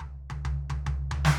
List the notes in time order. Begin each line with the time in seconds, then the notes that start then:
0.05 floor tom, high tom
0.30 floor tom, high tom
0.45 floor tom, high tom
0.70 floor tom, high tom
0.86 floor tom, high tom
1.11 floor tom, high tom
1.25 snare
1.27 snare